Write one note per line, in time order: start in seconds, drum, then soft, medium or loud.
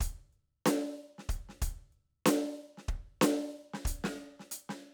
0.01 closed hi-hat loud
0.01 kick medium
0.33 closed hi-hat soft
0.66 closed hi-hat loud
0.66 snare loud
0.99 closed hi-hat soft
1.19 snare soft
1.29 closed hi-hat medium
1.29 kick medium
1.49 snare soft
1.62 closed hi-hat loud
1.62 kick medium
1.93 closed hi-hat soft
2.26 closed hi-hat loud
2.26 snare loud
2.58 closed hi-hat soft
2.78 snare soft
2.89 kick medium
2.89 closed hi-hat soft
2.93 crash soft
3.22 closed hi-hat loud
3.22 snare loud
3.74 snare medium
3.86 closed hi-hat loud
3.86 kick medium
4.04 snare medium
4.18 closed hi-hat soft
4.40 snare soft
4.52 closed hi-hat loud
4.70 snare medium